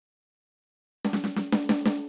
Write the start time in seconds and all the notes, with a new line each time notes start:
1.05 snare, hi-hat pedal
1.13 snare
1.24 snare
1.37 snare
1.53 snare, hi-hat pedal
1.69 snare
1.86 snare